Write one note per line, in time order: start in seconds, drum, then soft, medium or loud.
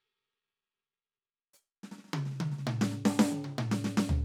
1.53 hi-hat pedal soft
1.83 snare soft
1.91 snare soft
1.98 snare soft
2.04 snare soft
2.08 snare soft
2.13 high tom loud
2.25 snare soft
2.31 snare soft
2.36 snare soft
2.40 high tom loud
2.51 snare soft
2.58 snare soft
2.64 snare soft
2.64 mid tom loud
2.81 snare loud
3.05 snare loud
3.19 snare loud
3.32 high tom medium
3.44 high tom medium
3.58 mid tom loud
3.71 snare medium
3.84 snare medium
3.97 snare loud
4.09 floor tom loud